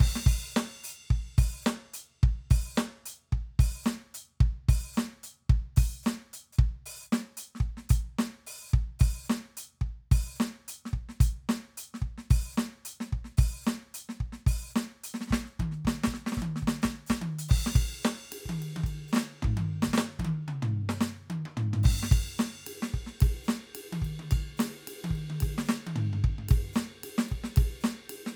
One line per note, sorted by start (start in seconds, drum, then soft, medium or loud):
0.01 kick loud
0.01 crash loud
0.16 snare medium
0.27 open hi-hat loud
0.27 kick loud
0.52 hi-hat pedal medium
0.57 snare loud
0.84 open hi-hat loud
0.89 hi-hat pedal soft
1.11 kick loud
1.38 open hi-hat loud
1.38 kick loud
1.63 snare loud
1.63 hi-hat pedal medium
1.94 closed hi-hat loud
2.24 kick loud
2.51 open hi-hat loud
2.51 kick loud
2.76 snare loud
2.76 hi-hat pedal medium
3.06 closed hi-hat loud
3.33 kick medium
3.60 open hi-hat loud
3.60 kick loud
3.84 snare loud
3.84 hi-hat pedal medium
4.15 closed hi-hat loud
4.41 kick loud
4.69 open hi-hat loud
4.69 kick loud
4.94 snare loud
4.94 hi-hat pedal medium
5.24 closed hi-hat loud
5.50 kick loud
5.77 open hi-hat loud
5.77 kick loud
6.04 snare loud
6.04 hi-hat pedal medium
6.34 closed hi-hat loud
6.53 hi-hat pedal medium
6.59 kick loud
6.86 open hi-hat loud
7.04 hi-hat pedal medium
7.13 snare loud
7.38 closed hi-hat loud
7.56 snare soft
7.61 kick medium
7.78 snare soft
7.90 closed hi-hat loud
7.90 kick loud
8.19 snare loud
8.47 open hi-hat loud
8.70 hi-hat pedal medium
8.74 kick loud
9.00 open hi-hat loud
9.00 kick loud
9.25 hi-hat pedal medium
9.30 snare loud
9.57 closed hi-hat loud
9.82 kick medium
10.12 open hi-hat loud
10.12 kick loud
10.36 hi-hat pedal medium
10.41 snare loud
10.69 closed hi-hat loud
10.86 snare medium
10.94 kick medium
11.09 snare soft
11.21 closed hi-hat loud
11.21 kick loud
11.50 snare loud
11.78 closed hi-hat loud
11.95 snare medium
12.02 kick medium
12.18 snare medium
12.31 open hi-hat loud
12.31 kick loud
12.53 hi-hat pedal medium
12.58 snare loud
12.86 closed hi-hat loud
13.01 snare medium
13.13 kick medium
13.25 snare soft
13.38 open hi-hat loud
13.38 kick loud
13.64 snare loud
13.64 hi-hat pedal medium
13.95 closed hi-hat loud
14.10 snare medium
14.21 kick medium
14.33 snare medium
14.47 open hi-hat loud
14.47 kick loud
14.71 hi-hat pedal medium
14.76 snare loud
15.04 closed hi-hat loud
15.15 snare medium
15.21 snare medium
15.28 kick medium
15.28 snare soft
15.33 snare loud
15.46 snare soft
15.53 snare soft
15.60 kick medium
15.60 high tom loud
15.72 snare soft
15.85 kick medium
15.85 snare loud
16.04 kick soft
16.04 snare loud
16.27 snare medium
16.33 snare medium
16.38 kick medium
16.38 snare medium
16.42 high tom loud
16.56 snare medium
16.63 kick medium
16.68 snare loud
16.82 kick soft
16.82 snare loud
16.82 hi-hat pedal medium
16.94 snare soft
17.07 kick soft
17.07 snare loud
17.07 hi-hat pedal medium
17.22 high tom loud
17.39 closed hi-hat loud
17.49 kick loud
17.49 crash loud
17.67 snare loud
17.76 kick loud
17.76 ride bell loud
18.03 snare loud
18.03 hi-hat pedal medium
18.33 ride loud
18.46 kick soft
18.46 high tom loud
18.63 ride medium
18.77 high tom loud
18.84 kick medium
18.84 ride bell medium
19.09 hi-hat pedal soft
19.13 snare loud
19.17 snare loud
19.43 kick loud
19.43 floor tom loud
19.57 cross-stick soft
19.57 high tom loud
19.83 snare loud
19.88 kick soft
19.94 snare loud
19.98 snare loud
20.20 kick medium
20.20 high tom loud
20.25 high tom loud
20.49 mid tom loud
20.63 floor tom loud
20.90 snare medium
21.01 snare loud
21.31 high tom loud
21.46 high tom medium
21.58 floor tom loud
21.74 floor tom loud
21.84 kick loud
21.84 crash loud
22.03 snare medium
22.12 kick loud
22.12 ride bell loud
22.38 snare loud
22.38 hi-hat pedal medium
22.67 ride loud
22.83 snare loud
22.94 kick medium
23.07 snare medium
23.21 kick loud
23.21 ride loud
23.45 hi-hat pedal medium
23.49 snare loud
23.76 ride loud
23.93 high tom loud
24.02 kick medium
24.02 ride medium
24.20 high tom loud
24.32 kick loud
24.32 ride bell loud
24.58 snare loud
24.58 hi-hat pedal medium
24.58 ride loud
24.88 ride loud
25.05 high tom loud
25.11 kick medium
25.16 ride soft
25.30 high tom loud
25.41 kick medium
25.41 ride loud
25.59 snare loud
25.66 snare loud
25.66 hi-hat pedal medium
25.87 high tom loud
25.96 floor tom loud
26.14 floor tom medium
26.25 kick loud
26.39 floor tom medium
26.49 kick loud
26.49 ride loud
26.74 snare loud
26.74 hi-hat pedal medium
27.04 ride loud
27.19 snare loud
27.29 kick medium
27.29 ride medium
27.44 snare medium
27.57 kick loud
27.57 ride loud
27.81 snare loud
27.81 hi-hat pedal medium
28.10 ride loud
28.27 snare medium